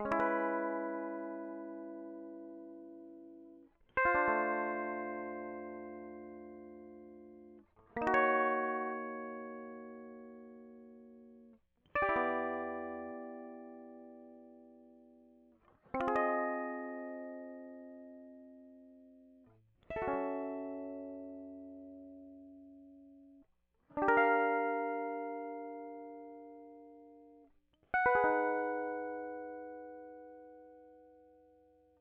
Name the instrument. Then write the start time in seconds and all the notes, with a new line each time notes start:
electric guitar
0.00 G#3
0.05 C#4
0.12 E4
0.20 B4
3.98 C5
4.06 F4
4.15 D4
4.29 A3
7.97 A#3
8.02 D#4
8.07 F#4
8.14 C#5
11.96 B4 D5
12.03 G4
12.09 E4
12.17 B3
15.95 C4
16.01 F4
16.08 G#4
16.16 D#5
19.91 E5
19.96 A4
20.02 F#4
20.08 C#4
23.98 D4
24.02 G4
24.08 A#4
24.18 F5
27.94 F#5
28.06 B4
28.16 G#4
28.24 D#4